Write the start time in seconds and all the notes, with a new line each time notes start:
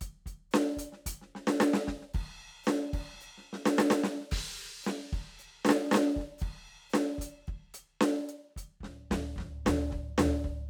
0.01 closed hi-hat, kick
0.26 closed hi-hat, kick
0.51 snare, hi-hat pedal
0.77 closed hi-hat, kick
0.93 snare
1.06 closed hi-hat, kick
1.22 snare
1.35 snare
1.47 snare
1.60 snare, hi-hat pedal
1.74 snare
1.87 kick, snare
2.02 snare
2.14 kick, crash
2.33 snare, open hi-hat
2.64 snare, hi-hat pedal
2.93 kick, crash
3.13 snare
3.21 hi-hat pedal
3.38 snare
3.53 snare
3.66 snare
3.78 snare, hi-hat pedal
3.90 snare
4.04 snare
4.20 snare
4.31 kick, hi-hat pedal, crash
4.83 snare, hi-hat pedal
5.13 kick, crash
5.39 hi-hat pedal
5.65 snare
5.69 snare
5.91 snare, hi-hat pedal
5.94 snare
6.16 kick, snare
6.39 kick, hi-hat pedal, crash
6.67 closed hi-hat
6.90 hi-hat pedal
6.94 snare
7.18 closed hi-hat, kick
7.47 kick, closed hi-hat
7.74 closed hi-hat
8.01 snare
8.29 closed hi-hat
8.50 snare
8.56 closed hi-hat, kick
8.81 kick, snare
8.85 floor tom
9.11 kick, snare, floor tom
9.36 kick, snare, floor tom
9.66 kick, snare, floor tom
9.90 kick, snare, floor tom
10.18 snare, floor tom, hi-hat pedal
10.44 kick, floor tom